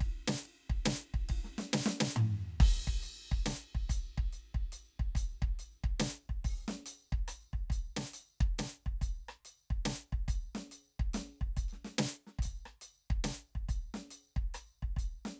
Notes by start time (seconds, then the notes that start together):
0.01 kick, ride
0.28 snare
0.46 ride
0.70 kick
0.86 snare, ride
1.14 kick
1.29 kick, ride
1.45 snare
1.59 snare
1.74 snare
1.86 snare
2.01 snare, hi-hat pedal
2.17 mid tom
2.61 kick, crash
2.88 kick
3.03 closed hi-hat
3.32 kick
3.46 closed hi-hat, snare
3.75 kick
3.90 closed hi-hat, kick
4.18 kick
4.33 closed hi-hat
4.55 kick
4.73 closed hi-hat
5.00 kick
5.16 closed hi-hat, kick
5.43 kick
5.59 closed hi-hat
5.84 kick
6.00 closed hi-hat, snare
6.30 kick
6.45 kick, percussion
6.63 hi-hat pedal
6.69 snare
6.86 closed hi-hat
7.13 kick
7.28 closed hi-hat, cross-stick
7.41 hi-hat pedal
7.54 kick
7.71 closed hi-hat, kick
7.97 snare
8.14 closed hi-hat
8.41 kick
8.59 closed hi-hat, snare
8.87 kick
9.02 closed hi-hat, kick
9.29 cross-stick
9.46 closed hi-hat
9.71 kick
9.86 closed hi-hat, snare
10.13 kick
10.29 closed hi-hat, kick
10.56 snare
10.72 closed hi-hat
11.00 kick
11.14 closed hi-hat, snare
11.42 kick
11.57 closed hi-hat, kick
11.69 hi-hat pedal
11.73 snare
11.85 snare
11.99 snare
12.13 hi-hat pedal, percussion
12.27 snare
12.39 closed hi-hat, kick
12.46 kick
12.66 cross-stick
12.82 closed hi-hat
13.11 kick
13.25 closed hi-hat, snare
13.56 kick
13.69 closed hi-hat, kick
13.95 snare
14.11 closed hi-hat
14.37 kick
14.55 closed hi-hat, cross-stick
14.83 kick
14.97 closed hi-hat, kick
15.26 snare